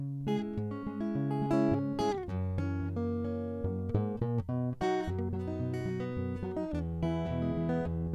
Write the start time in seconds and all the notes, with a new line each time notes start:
0.01 C#3
0.28 G#3 E4 G#4
0.59 G#2
0.72 C#4
0.88 G#3
1.01 E4
1.16 C#3
1.31 G#4
1.43 G#3
1.51 C#4 E4
1.73 G#2
1.99 G#3 E4 G#4
2.19 F#4
2.31 F#2
2.59 E3 C#4
2.85 E3
2.97 A#3
3.25 C#4
3.65 F#2
3.96 G#2
4.23 A#2
4.50 B2
4.82 F#3 D#4 F#4
5.09 F#2
5.19 B3
5.34 F#3
5.49 D#4
5.61 B2
5.74 F#4
5.87 F#3
6.01 B3
6.18 F#2
6.44 F#3
6.57 D#4
6.74 E2
7.03 E3 B3 E4
7.27 E2
7.32 B2
7.43 G#3
7.58 E3
7.70 B3
7.88 E2